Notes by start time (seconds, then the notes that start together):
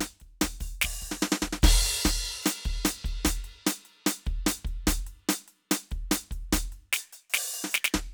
0.01 closed hi-hat, snare
0.20 kick, closed hi-hat
0.42 open hi-hat, kick, snare
0.61 open hi-hat, kick
0.82 open hi-hat, kick, snare
1.02 open hi-hat, kick
1.12 snare
1.23 snare
1.32 snare
1.41 kick, hi-hat pedal
1.53 snare
1.63 kick, snare, hi-hat pedal, crash
1.83 closed hi-hat
2.04 closed hi-hat, kick, snare, hi-hat pedal
2.26 closed hi-hat
2.43 closed hi-hat, snare, hi-hat pedal
2.66 kick, closed hi-hat
2.85 closed hi-hat, snare
3.05 kick, closed hi-hat
3.25 closed hi-hat, kick, snare
3.45 closed hi-hat
3.67 closed hi-hat, snare
3.86 closed hi-hat
4.07 closed hi-hat, snare
4.27 kick, closed hi-hat
4.47 closed hi-hat, snare
4.65 kick, closed hi-hat
4.87 closed hi-hat, kick, snare
5.07 closed hi-hat
5.29 closed hi-hat, snare
5.48 closed hi-hat
5.72 closed hi-hat, snare
5.91 kick, closed hi-hat
6.12 closed hi-hat, snare
6.31 kick, closed hi-hat
6.53 closed hi-hat, kick, snare
6.73 closed hi-hat
6.93 closed hi-hat, snare
7.13 closed hi-hat
7.30 hi-hat pedal
7.34 open hi-hat, snare
7.54 open hi-hat
7.64 snare
7.71 snare, hi-hat pedal
7.94 kick, snare